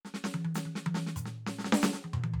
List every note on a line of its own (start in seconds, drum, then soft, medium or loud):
0.05 snare soft
0.14 snare medium
0.24 snare medium
0.34 high tom loud
0.45 high tom medium
0.55 snare medium
0.55 hi-hat pedal medium
0.65 high tom medium
0.75 snare medium
0.86 high tom loud
0.94 snare medium
1.06 snare medium
1.16 hi-hat pedal medium
1.16 mid tom medium
1.26 snare medium
1.47 snare medium
1.58 snare medium
1.64 snare medium
1.72 snare loud
1.82 snare loud
1.82 hi-hat pedal medium
1.93 snare medium
2.04 high tom medium
2.13 mid tom loud
2.24 high tom loud
2.33 floor tom medium